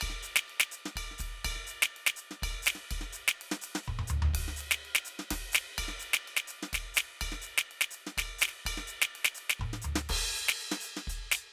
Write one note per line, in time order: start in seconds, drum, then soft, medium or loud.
0.01 kick soft
0.01 ride bell loud
0.10 snare soft
0.23 hi-hat pedal medium
0.23 ride soft
0.36 snare loud
0.45 hi-hat pedal soft
0.50 ride soft
0.60 snare loud
0.71 hi-hat pedal medium
0.71 ride soft
0.85 snare medium
0.96 kick soft
0.96 ride bell loud
1.11 snare soft
1.18 kick soft
1.18 hi-hat pedal medium
1.18 ride medium
1.45 kick soft
1.45 ride bell loud
1.51 kick soft
1.53 kick soft
1.53 snare soft
1.67 hi-hat pedal medium
1.71 ride soft
1.82 snare loud
1.96 ride soft
2.06 snare loud
2.16 hi-hat pedal medium
2.16 ride soft
2.31 snare soft
2.42 kick soft
2.42 ride bell loud
2.48 kick soft
2.51 kick soft
2.62 hi-hat pedal medium
2.62 ride loud
2.67 snare loud
2.75 snare soft
2.91 kick soft
2.91 ride bell medium
2.97 kick soft
3.01 snare soft
3.13 hi-hat pedal medium
3.13 ride soft
3.28 snare loud
3.41 ride medium
3.51 snare medium
3.61 hi-hat pedal medium
3.61 ride medium
3.75 snare medium
3.83 hi-hat pedal soft
3.88 kick soft
3.88 mid tom medium
3.93 kick soft
3.99 mid tom loud
4.07 floor tom loud
4.07 hi-hat pedal medium
4.22 floor tom loud
4.34 kick soft
4.34 ride loud
4.40 kick soft
4.42 kick soft
4.48 snare soft
4.56 hi-hat pedal medium
4.61 ride medium
4.71 snare loud
4.85 ride soft
4.95 snare loud
5.05 hi-hat pedal medium
5.05 ride medium
5.19 snare medium
5.31 kick soft
5.31 snare medium
5.31 ride loud
5.52 snare loud
5.52 hi-hat pedal medium
5.52 ride medium
5.78 kick soft
5.78 ride bell loud
5.88 snare soft
5.99 hi-hat pedal medium
5.99 ride medium
6.13 snare loud
6.28 ride bell medium
6.37 snare medium
6.47 hi-hat pedal medium
6.47 ride medium
6.63 snare medium
6.73 kick soft
6.73 snare medium
6.73 ride bell medium
6.94 snare loud
6.94 hi-hat pedal medium
6.94 ride medium
7.21 kick soft
7.21 ride bell loud
7.29 kick soft
7.29 snare soft
7.42 hi-hat pedal medium
7.47 ride soft
7.58 snare loud
7.71 ride soft
7.81 snare loud
7.91 hi-hat pedal medium
7.91 ride medium
8.07 snare medium
8.17 kick soft
8.17 snare medium
8.17 ride bell loud
8.38 snare loud
8.38 hi-hat pedal medium
8.38 ride medium
8.48 snare soft
8.65 kick soft
8.65 ride bell loud
8.77 snare soft
8.87 hi-hat pedal medium
8.87 ride soft
9.02 snare loud
9.15 ride medium
9.25 snare loud
9.35 hi-hat pedal medium
9.35 ride medium
9.50 snare loud
9.60 kick soft
9.60 mid tom medium
9.73 snare soft
9.82 floor tom medium
9.82 hi-hat pedal medium
9.96 snare medium
10.09 kick soft
10.09 crash medium
10.16 kick soft
10.20 kick soft
10.36 closed hi-hat medium
10.48 snare loud
10.60 closed hi-hat soft
10.71 snare medium
10.80 closed hi-hat soft
10.80 hi-hat pedal medium
10.97 snare medium
11.07 closed hi-hat medium
11.07 kick soft
11.31 closed hi-hat medium
11.31 snare loud